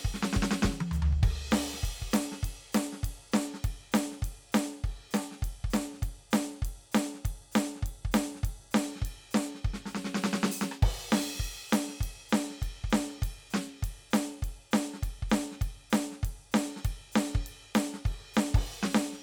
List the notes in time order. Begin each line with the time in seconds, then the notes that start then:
0.01 hi-hat pedal
0.05 kick
0.14 snare
0.23 snare
0.33 kick, snare, hi-hat pedal
0.43 snare
0.51 snare
0.63 kick, snare, hi-hat pedal
0.71 high tom
0.81 high tom
0.92 floor tom, hi-hat pedal
1.02 floor tom
1.13 kick
1.23 kick, ride
1.52 snare, hi-hat pedal, crash
1.74 snare
1.84 kick, ride
2.02 kick
2.11 snare, hi-hat pedal, ride
2.32 snare
2.43 kick, ride
2.73 snare, hi-hat pedal, ride
2.93 snare
3.03 kick, ride
3.32 snare, hi-hat pedal, ride
3.54 snare
3.64 kick, ride
3.92 snare, hi-hat pedal, ride
4.12 snare
4.17 snare
4.22 kick, ride
4.52 snare, hi-hat pedal, ride
4.74 cross-stick
4.84 kick, ride
5.11 snare, hi-hat pedal, ride
5.32 snare
5.43 kick, ride
5.65 kick
5.71 snare, hi-hat pedal
5.75 ride
5.94 snare
6.03 kick, ride
6.31 snare, hi-hat pedal, ride
6.53 snare
6.62 kick, ride
6.92 snare, hi-hat pedal, ride
7.15 snare
7.25 kick, ride
7.52 snare, hi-hat pedal, ride
7.76 snare
7.83 kick, ride
8.05 kick
8.12 snare, hi-hat pedal, ride
8.35 snare
8.44 kick, ride
8.66 kick
8.71 snare, hi-hat pedal, ride
8.96 snare
9.02 kick, ride
9.31 snare, hi-hat pedal, ride
9.55 snare
9.65 kick, ride
9.74 snare
9.86 snare
9.90 hi-hat pedal
9.95 snare
10.05 snare
10.15 snare
10.22 snare, hi-hat pedal
10.33 snare
10.44 snare
10.52 open hi-hat
10.62 snare
10.72 cross-stick
10.83 kick, crash
11.12 snare, hi-hat pedal, crash
11.17 snare
11.35 snare
11.40 kick
11.45 ride
11.69 snare, hi-hat pedal
11.74 ride
11.89 snare
12.01 kick, ride
12.29 snare, hi-hat pedal, ride
12.50 snare
12.62 kick, ride
12.84 kick
12.90 snare, hi-hat pedal, ride
13.10 cross-stick
13.22 kick, ride
13.51 snare, hi-hat pedal, ride
13.83 kick, ride
14.11 snare, hi-hat pedal, ride
14.43 kick, ride
14.71 snare, hi-hat pedal, ride
14.94 snare
15.03 kick, ride
15.23 kick
15.30 snare, hi-hat pedal, ride
15.52 snare
15.62 kick, ride
15.91 snare, hi-hat pedal, ride
16.12 snare
16.23 kick, ride
16.52 snare, hi-hat pedal, ride
16.77 snare
16.85 kick, ride
17.12 snare, hi-hat pedal, ride
17.35 kick
17.47 ride
17.75 snare, hi-hat pedal, ride
17.94 snare
18.06 kick, ride
18.34 snare, hi-hat pedal
18.55 kick, crash
18.83 snare
18.93 snare, hi-hat pedal
19.13 snare